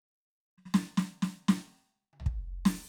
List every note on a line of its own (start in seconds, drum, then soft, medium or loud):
0.58 snare soft
0.66 snare soft
0.70 snare soft
0.75 snare loud
0.98 snare loud
1.23 snare medium
1.49 snare loud
2.13 high tom soft
2.20 floor tom medium
2.26 kick medium
2.66 open hi-hat loud
2.66 snare loud